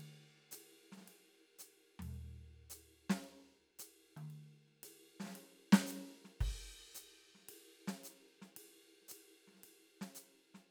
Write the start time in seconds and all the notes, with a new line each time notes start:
0.01 ride
0.52 hi-hat pedal, ride
0.93 snare
0.98 snare
1.02 snare
1.05 snare, ride
1.60 hi-hat pedal, ride
2.00 floor tom, ride
2.15 ride
2.71 hi-hat pedal, ride
3.10 snare, ride
3.25 ride
3.80 hi-hat pedal, ride
4.17 high tom, ride
4.31 ride
4.68 snare
4.72 snare
4.84 hi-hat pedal, ride
5.21 snare
5.24 snare
5.27 snare
5.30 snare
5.32 snare, ride
5.73 snare
5.87 hi-hat pedal
5.92 ride
6.25 snare
6.41 kick, crash
6.95 hi-hat pedal, ride
7.35 snare
7.39 snare
7.43 snare
7.49 ride
7.88 snare, ride
8.04 hi-hat pedal, ride
8.42 snare
8.57 ride
9.02 snare
9.09 hi-hat pedal, ride
9.48 snare
9.52 snare
9.55 snare
9.57 snare
9.64 ride
10.02 snare, ride
10.16 hi-hat pedal, ride
10.55 snare